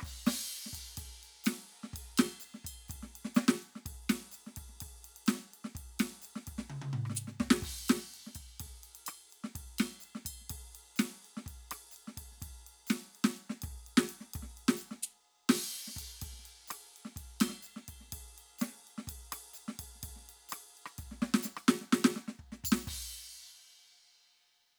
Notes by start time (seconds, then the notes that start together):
0.01 kick, cross-stick
0.06 percussion, crash
0.27 snare, crash
0.67 snare
0.74 kick, ride, percussion
0.98 kick, ride
1.06 kick
1.24 ride
1.45 snare, ride, percussion
1.73 ride
1.84 snare
1.94 kick, ride, percussion
2.19 snare, ride bell
2.41 percussion
2.46 ride
2.55 snare
2.65 kick, ride bell
2.89 kick, ride, percussion
2.97 kick
3.04 snare
3.16 ride
3.26 snare
3.36 snare, percussion
3.49 snare
3.63 ride
3.76 snare
3.87 kick, ride, percussion
3.93 kick
3.95 kick
4.11 snare, ride
4.33 ride, percussion
4.48 snare
4.57 kick, ride
4.70 snare
4.77 snare
4.82 kick, ride, percussion
5.05 ride
5.17 ride
5.28 snare, percussion
5.36 snare
5.55 ride
5.65 snare
5.76 kick, ride, percussion
5.82 kick
6.00 snare, ride
6.23 ride, percussion
6.37 snare
6.48 kick, ride
6.59 snare
6.68 kick, mid tom
6.83 mid tom
6.94 floor tom
7.06 cross-stick
7.11 snare
7.16 percussion, floor tom
7.28 snare
7.41 kick, snare
7.51 snare
7.63 kick, percussion, crash
7.70 kick
7.89 snare, ride bell
7.98 snare
8.15 ride
8.28 snare
8.36 kick, ride bell
8.61 kick, ride
8.67 kick
8.85 ride
8.96 ride
9.07 cross-stick, ride bell, percussion
9.30 ride, percussion
9.45 snare
9.56 kick, ride
9.62 kick
9.80 snare, ride bell
10.01 ride, percussion
10.16 snare
10.26 kick, ride bell
10.42 snare
10.50 kick, ride, percussion
10.76 ride
10.97 snare, ride, percussion
11.26 ride
11.38 snare
11.47 kick, ride, percussion
11.55 kick
11.72 cross-stick, ride
11.92 percussion
11.97 ride
12.09 snare
12.18 kick, ride
12.32 snare
12.38 snare, percussion
12.43 kick, snare, ride
12.49 kick
12.51 kick
12.68 ride
12.88 snare, ride, percussion
13.16 ride
13.25 snare
13.38 ride
13.51 snare
13.63 kick, ride
13.72 kick
13.76 kick
13.88 ride
13.98 snare
14.10 ride, percussion
14.22 snare
14.35 kick, ride
14.43 kick, snare
14.58 ride
14.69 snare
14.78 percussion
14.82 ride bell
14.92 snare
15.04 floor tom
15.50 snare, crash
15.88 snare
15.97 kick, ride, percussion
16.03 kick
16.23 kick, ride
16.34 snare
16.40 snare
16.47 ride
16.69 cross-stick, ride, percussion
16.97 ride
17.06 snare
17.17 kick, ride, percussion
17.25 kick
17.41 snare, ride bell
17.50 snare
17.64 ride, percussion
17.77 snare
17.89 kick, ride
18.01 snare
18.09 snare
18.13 kick, ride
18.39 ride
18.60 snare, ride, percussion
18.88 ride
18.99 snare
19.08 kick, ride, percussion
19.16 kick
19.33 cross-stick, ride
19.55 percussion
19.59 ride
19.69 snare
19.80 kick, ride
19.96 snare
20.04 kick, ride, percussion
20.10 kick
20.17 snare
20.22 snare
20.30 ride
20.50 cross-stick, ride, percussion
20.78 ride
20.87 cross-stick
20.99 kick, ride, percussion
21.06 kick
21.08 kick
21.12 snare
21.23 snare
21.35 snare
21.44 snare, percussion
21.58 cross-stick
21.69 snare
21.82 snare
21.94 snare
22.05 snare
22.17 snare
22.29 snare
22.40 kick
22.53 snare
22.65 kick, percussion
22.73 snare
22.88 kick, crash
22.95 kick